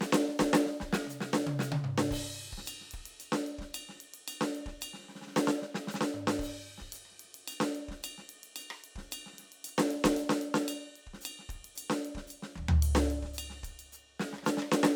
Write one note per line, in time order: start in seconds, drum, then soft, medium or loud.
0.01 snare loud
0.01 hi-hat pedal medium
0.13 snare loud
0.28 snare soft
0.39 kick soft
0.39 snare loud
0.53 snare loud
0.53 hi-hat pedal medium
0.66 snare soft
0.80 kick soft
0.80 snare medium
0.88 kick soft
0.93 snare loud
1.07 hi-hat pedal medium
1.07 high tom medium
1.21 snare medium
1.33 snare loud
1.47 high tom loud
1.59 snare medium
1.59 hi-hat pedal medium
1.72 high tom loud
1.84 mid tom loud
1.98 snare loud
2.11 kick medium
2.11 hi-hat pedal medium
2.11 crash loud
2.24 kick soft
2.53 kick soft
2.58 snare soft
2.66 hi-hat pedal medium
2.66 ride bell loud
2.81 snare soft
2.86 snare soft
2.91 kick soft
2.91 ride medium
3.04 snare soft
3.04 ride medium
3.20 hi-hat pedal medium
3.20 ride bell medium
3.32 snare medium
3.47 ride soft
3.59 kick soft
3.59 snare soft
3.74 hi-hat pedal medium
3.74 ride bell loud
3.89 snare soft
3.95 snare soft
4.01 ride medium
4.14 ride medium
4.28 hi-hat pedal medium
4.28 ride bell loud
4.41 snare medium
4.55 ride soft
4.66 kick soft
4.66 snare soft
4.72 kick soft
4.81 hi-hat pedal medium
4.81 ride bell loud
4.94 snare soft
4.99 snare soft
5.03 snare soft
5.09 snare soft
5.15 snare soft
5.20 snare soft
5.27 snare soft
5.32 snare soft
5.36 snare loud
5.36 hi-hat pedal medium
5.48 snare medium
5.62 snare soft
5.75 snare medium
5.87 snare medium
5.87 hi-hat pedal medium
5.94 snare medium
6.01 snare medium
6.14 mid tom medium
6.27 snare loud
6.39 kick soft
6.39 crash medium
6.43 hi-hat pedal medium
6.78 kick soft
6.78 snare soft
6.93 hi-hat pedal medium
6.93 ride medium
7.06 cross-stick soft
7.11 snare soft
7.20 ride medium
7.24 snare soft
7.35 ride medium
7.48 hi-hat pedal medium
7.48 ride bell loud
7.60 snare loud
7.75 ride soft
7.89 kick soft
7.89 snare soft
8.03 hi-hat pedal medium
8.03 ride bell loud
8.18 snare soft
8.29 ride medium
8.44 ride medium
8.56 hi-hat pedal medium
8.56 ride bell loud
8.71 cross-stick medium
8.84 ride medium
8.96 kick soft
8.96 snare soft
9.11 hi-hat pedal medium
9.11 ride bell loud
9.26 snare soft
9.33 snare soft
9.39 snare soft
9.39 ride medium
9.43 snare soft
9.46 snare soft
9.52 ride medium
9.65 hi-hat pedal medium
9.65 ride bell medium
9.78 snare loud
9.91 ride medium
10.04 kick soft
10.04 snare loud
10.17 hi-hat pedal medium
10.17 ride medium
10.30 snare loud
10.42 ride medium
10.54 snare loud
10.68 hi-hat pedal medium
10.68 ride bell loud
10.96 ride soft
11.07 kick soft
11.14 snare soft
11.21 hi-hat pedal medium
11.25 ride bell loud
11.39 snare soft
11.49 kick soft
11.49 ride medium
11.55 kick soft
11.63 snare soft
11.63 ride medium
11.66 snare soft
11.76 hi-hat pedal medium
11.76 ride bell loud
11.90 snare medium
12.05 ride medium
12.15 kick soft
12.15 snare soft
12.28 hi-hat pedal medium
12.28 ride bell medium
12.43 snare medium
12.56 kick soft
12.56 floor tom medium
12.69 floor tom loud
12.83 hi-hat pedal medium
12.83 ride loud
12.95 snare loud
13.10 ride medium
13.23 kick soft
13.23 snare soft
13.34 hi-hat pedal medium
13.39 ride bell loud
13.50 snare soft
13.57 cross-stick soft
13.63 kick soft
13.63 ride bell medium
13.79 ride bell medium
13.93 hi-hat pedal medium
14.20 snare medium
14.33 snare soft
14.39 cross-stick soft
14.46 snare loud
14.46 hi-hat pedal medium
14.57 snare medium
14.62 cross-stick medium
14.72 snare loud
14.83 snare loud
14.89 cross-stick medium